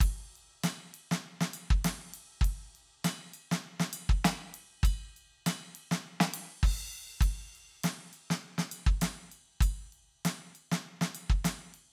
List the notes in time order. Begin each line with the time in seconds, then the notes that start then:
0.01 kick, ride
0.36 ride
0.64 snare, ride bell
0.94 ride
1.11 snare
1.41 snare
1.54 ride bell
1.71 kick
1.85 snare, ride
2.14 ride
2.41 kick, ride
2.75 ride
3.05 snare, ride bell
3.34 ride bell
3.52 snare
3.80 snare
3.93 ride bell
4.09 kick
4.25 snare, ride bell
4.54 ride
4.83 kick, ride bell
5.17 ride bell
5.46 snare, ride bell
5.75 ride
5.92 snare
6.21 snare
6.34 ride
6.63 kick, crash
6.82 crash
7.21 kick, ride
7.55 ride
7.84 snare, ride
8.13 ride bell
8.30 snare
8.58 snare
8.72 ride bell
8.87 kick
9.02 snare, ride bell
9.32 ride bell
9.61 kick, ride bell
9.93 ride
10.25 snare, ride bell
10.55 ride bell
10.72 snare
11.01 snare
11.15 ride bell
11.30 kick
11.45 snare, ride bell
11.74 ride